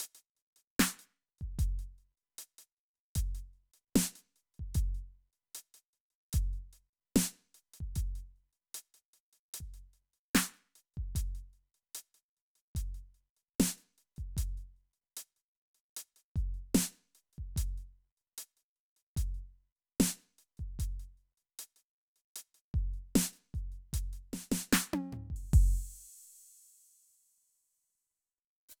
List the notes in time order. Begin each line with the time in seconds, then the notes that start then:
0.00 closed hi-hat
0.15 closed hi-hat
0.37 closed hi-hat
0.56 closed hi-hat
0.79 snare
0.99 closed hi-hat
1.38 kick, closed hi-hat
1.59 closed hi-hat, kick
1.79 closed hi-hat
1.98 closed hi-hat
2.17 closed hi-hat
2.38 closed hi-hat
2.58 closed hi-hat
2.77 closed hi-hat
2.95 closed hi-hat
3.15 closed hi-hat, kick
3.35 closed hi-hat
3.53 closed hi-hat
3.74 closed hi-hat
3.96 snare
4.15 closed hi-hat
4.36 closed hi-hat
4.54 closed hi-hat
4.59 kick
4.75 closed hi-hat, kick
4.95 closed hi-hat
5.33 closed hi-hat
5.55 closed hi-hat
5.74 closed hi-hat
5.93 closed hi-hat
6.10 closed hi-hat
6.33 closed hi-hat, kick
6.44 kick
6.53 closed hi-hat
6.73 closed hi-hat
6.93 closed hi-hat
7.16 snare
7.54 closed hi-hat
7.74 closed hi-hat
7.80 kick
7.96 closed hi-hat, kick
8.15 closed hi-hat
8.36 closed hi-hat
8.53 closed hi-hat
8.74 closed hi-hat
8.94 closed hi-hat
9.13 closed hi-hat
9.33 closed hi-hat
9.54 closed hi-hat
9.60 kick
9.74 closed hi-hat
9.93 closed hi-hat
10.13 closed hi-hat
10.35 snare
10.54 closed hi-hat
10.75 closed hi-hat
10.94 kick, closed hi-hat
11.15 closed hi-hat, kick
11.35 closed hi-hat
11.53 closed hi-hat
11.74 closed hi-hat
11.95 closed hi-hat
12.14 closed hi-hat
12.37 closed hi-hat
12.55 closed hi-hat
12.75 closed hi-hat, kick
12.94 closed hi-hat
13.14 closed hi-hat
13.37 closed hi-hat
13.60 snare
13.78 closed hi-hat
13.98 closed hi-hat
14.16 kick, closed hi-hat
14.37 closed hi-hat, kick
14.57 closed hi-hat
14.76 closed hi-hat
14.93 closed hi-hat
15.17 closed hi-hat
15.36 closed hi-hat
15.55 closed hi-hat
15.75 closed hi-hat
15.97 closed hi-hat
16.16 closed hi-hat
16.36 kick, closed hi-hat
16.54 closed hi-hat
16.75 snare
16.93 closed hi-hat
17.15 closed hi-hat
17.33 closed hi-hat
17.38 kick
17.56 closed hi-hat, kick
17.78 closed hi-hat
18.17 closed hi-hat
18.38 closed hi-hat
18.57 closed hi-hat
18.76 closed hi-hat
18.96 closed hi-hat
19.17 closed hi-hat, kick
19.34 closed hi-hat
19.76 closed hi-hat
20.00 snare
20.19 closed hi-hat
20.38 closed hi-hat
20.57 kick, closed hi-hat
20.79 closed hi-hat, kick
21.00 closed hi-hat
21.17 closed hi-hat
21.37 closed hi-hat
21.59 closed hi-hat
21.76 closed hi-hat
22.16 closed hi-hat
22.36 closed hi-hat
22.54 closed hi-hat
22.74 kick, closed hi-hat
22.94 closed hi-hat
23.15 snare
23.33 closed hi-hat
23.54 kick, closed hi-hat
23.72 closed hi-hat
23.93 closed hi-hat, kick
24.13 closed hi-hat
24.33 snare
24.52 snare
24.73 snare
24.93 high tom
25.12 floor tom
25.30 kick
25.36 crash
25.53 kick, crash
28.69 hi-hat pedal